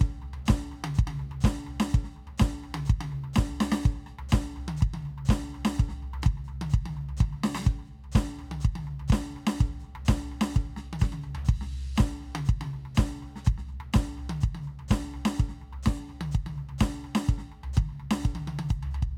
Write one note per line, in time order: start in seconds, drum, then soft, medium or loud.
0.01 kick loud
0.10 open hi-hat soft
0.22 floor tom medium
0.33 floor tom medium
0.46 snare loud
0.46 hi-hat pedal medium
0.50 kick loud
0.71 floor tom medium
0.84 high tom loud
0.94 floor tom soft
0.94 hi-hat pedal medium
0.99 kick loud
1.07 high tom loud
1.16 floor tom medium
1.16 hi-hat pedal soft
1.31 floor tom medium
1.41 kick loud
1.41 hi-hat pedal medium
1.45 snare loud
1.55 floor tom medium
1.62 hi-hat pedal soft
1.67 floor tom medium
1.80 snare loud
1.90 floor tom soft
1.90 hi-hat pedal medium
1.94 kick loud
2.04 snare soft
2.11 hi-hat pedal soft
2.16 floor tom soft
2.27 floor tom medium
2.38 kick loud
2.38 snare loud
2.38 hi-hat pedal medium
2.52 floor tom soft
2.59 hi-hat pedal soft
2.64 floor tom medium
2.74 high tom loud
2.85 floor tom medium
2.85 hi-hat pedal medium
2.90 kick loud
3.01 high tom loud
3.07 hi-hat pedal soft
3.12 floor tom medium
3.24 floor tom medium
3.33 snare loud
3.33 hi-hat pedal medium
3.38 kick loud
3.48 floor tom medium
3.56 hi-hat pedal soft
3.60 snare loud
3.72 snare loud
3.81 kick loud
3.81 hi-hat pedal medium
3.96 floor tom medium
4.03 cross-stick medium
4.03 hi-hat pedal soft
4.19 floor tom medium
4.29 snare loud
4.29 hi-hat pedal medium
4.33 kick loud
4.50 hi-hat pedal soft
4.56 floor tom medium
4.68 high tom loud
4.77 hi-hat pedal medium
4.81 kick loud
4.81 floor tom medium
4.94 high tom loud
4.98 hi-hat pedal soft
5.05 floor tom medium
5.18 floor tom medium
5.25 kick loud
5.25 hi-hat pedal medium
5.30 snare loud
5.47 hi-hat pedal soft
5.54 floor tom medium
5.65 snare loud
5.74 hi-hat pedal medium
5.79 kick loud
5.79 floor tom loud
5.89 snare medium
5.96 hi-hat pedal soft
6.02 floor tom medium
6.13 floor tom medium
6.22 kick loud
6.22 hi-hat pedal medium
6.22 high tom loud
6.37 floor tom medium
6.44 floor tom medium
6.44 hi-hat pedal soft
6.61 high tom loud
6.70 hi-hat pedal medium
6.74 kick loud
6.74 floor tom medium
6.86 high tom loud
6.92 hi-hat pedal soft
6.97 floor tom medium
7.09 floor tom medium
7.17 kick loud
7.17 hi-hat pedal medium
7.21 high tom loud
7.33 floor tom medium
7.44 snare loud
7.55 snare loud
7.63 kick loud
7.63 hi-hat pedal medium
7.79 floor tom medium
7.85 hi-hat pedal soft
8.04 floor tom medium
8.12 kick loud
8.12 snare loud
8.12 hi-hat pedal medium
8.28 floor tom medium
8.39 floor tom medium
8.51 high tom medium
8.60 hi-hat pedal medium
8.64 kick loud
8.64 floor tom medium
8.75 high tom loud
8.83 hi-hat pedal soft
8.87 floor tom medium
8.99 floor tom medium
9.08 kick loud
9.08 hi-hat pedal medium
9.12 snare loud
9.25 floor tom medium
9.36 floor tom medium
9.47 snare loud
9.58 kick loud
9.58 floor tom medium
9.58 hi-hat pedal medium
9.79 floor tom soft
9.79 hi-hat pedal soft
9.95 floor tom medium
10.05 kick loud
10.05 snare loud
10.05 hi-hat pedal medium
10.20 floor tom soft
10.27 hi-hat pedal soft
10.32 floor tom medium
10.41 snare loud
10.53 kick loud
10.53 floor tom medium
10.53 hi-hat pedal medium
10.65 high tom medium
10.74 snare medium
10.74 hi-hat pedal soft
10.93 high tom loud
10.99 kick loud
10.99 snare loud
10.99 hi-hat pedal medium
11.12 high tom loud
11.21 floor tom medium
11.21 hi-hat pedal soft
11.35 floor tom loud
11.45 kick loud
11.45 hi-hat pedal medium
11.49 crash medium
11.61 snare medium
11.96 snare loud
11.96 hi-hat pedal medium
12.00 kick loud
12.21 floor tom medium
12.35 high tom loud
12.45 kick loud
12.45 floor tom medium
12.45 hi-hat pedal medium
12.61 high tom loud
12.73 floor tom soft
12.85 floor tom medium
12.95 kick loud
12.95 snare loud
12.95 hi-hat pedal medium
13.11 floor tom soft
13.18 hi-hat pedal soft
13.22 floor tom medium
13.36 snare soft
13.45 kick loud
13.45 floor tom loud
13.45 hi-hat pedal medium
13.58 snare soft
13.67 floor tom medium
13.67 hi-hat pedal soft
13.80 floor tom medium
13.93 kick loud
13.93 snare loud
13.93 hi-hat pedal medium
14.05 floor tom medium
14.17 floor tom medium
14.29 high tom loud
14.41 kick loud
14.41 floor tom medium
14.41 hi-hat pedal medium
14.55 high tom loud
14.62 hi-hat pedal soft
14.67 floor tom medium
14.79 floor tom medium
14.88 kick loud
14.88 snare loud
14.88 hi-hat pedal medium
15.03 floor tom medium
15.11 floor tom medium
15.11 hi-hat pedal soft
15.25 snare loud
15.36 kick loud
15.36 floor tom medium
15.36 hi-hat pedal medium
15.49 snare soft
15.58 floor tom soft
15.58 hi-hat pedal soft
15.73 floor tom medium
15.83 snare loud
15.83 hi-hat pedal medium
15.87 kick loud
15.97 floor tom medium
16.05 floor tom medium
16.05 hi-hat pedal soft
16.21 high tom loud
16.31 kick loud
16.31 floor tom medium
16.31 hi-hat pedal medium
16.46 high tom loud
16.54 floor tom medium
16.54 hi-hat pedal soft
16.69 floor tom medium
16.78 kick loud
16.78 snare loud
16.78 hi-hat pedal medium
16.93 floor tom medium
17.04 floor tom medium
17.15 snare loud
17.25 kick loud
17.25 hi-hat pedal medium
17.29 floor tom medium
17.38 snare medium
17.47 hi-hat pedal soft
17.52 floor tom medium
17.63 floor tom medium
17.73 hi-hat pedal medium
17.73 high tom loud
17.78 kick loud
17.89 floor tom medium
18.00 floor tom medium
18.11 snare loud
18.21 kick loud
18.21 floor tom medium
18.21 hi-hat pedal medium
18.35 high tom loud
18.42 hi-hat pedal soft
18.47 high tom loud
18.59 high tom loud
18.69 kick medium
18.69 floor tom medium
18.69 hi-hat pedal medium
18.83 floor tom loud
18.91 floor tom loud
18.91 hi-hat pedal soft
19.02 kick medium